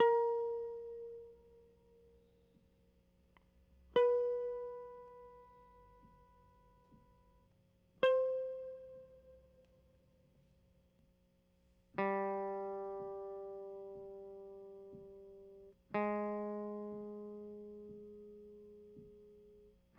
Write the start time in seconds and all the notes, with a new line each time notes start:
0.00 A#4
3.96 B4
8.03 C5
11.99 G3
15.95 G#3